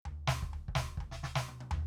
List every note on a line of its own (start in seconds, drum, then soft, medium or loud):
0.05 floor tom medium
0.27 snare loud
0.27 floor tom medium
0.42 kick medium
0.53 floor tom medium
0.68 kick medium
0.75 snare medium
0.75 floor tom medium
0.97 kick medium
0.97 floor tom medium
1.11 snare medium
1.23 snare medium
1.35 snare medium
1.48 high tom medium
1.60 high tom medium
1.71 floor tom loud